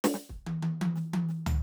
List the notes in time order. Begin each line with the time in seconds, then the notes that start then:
0.04 snare
0.14 snare
0.29 kick
0.46 high tom
0.62 high tom
0.81 high tom
0.95 snare
1.13 high tom
1.28 snare
1.46 floor tom